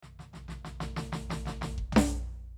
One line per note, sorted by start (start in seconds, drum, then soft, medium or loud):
0.02 snare soft
0.02 floor tom soft
0.19 snare soft
0.19 floor tom soft
0.33 snare soft
0.33 floor tom medium
0.48 snare medium
0.48 floor tom medium
0.65 snare medium
0.65 floor tom medium
0.80 snare medium
0.80 floor tom medium
0.96 snare medium
0.96 floor tom medium
1.12 snare medium
1.12 floor tom medium
1.29 snare medium
1.29 floor tom medium
1.45 snare medium
1.45 floor tom medium
1.61 snare medium
1.61 floor tom medium
1.78 kick medium
1.92 snare loud
1.92 floor tom loud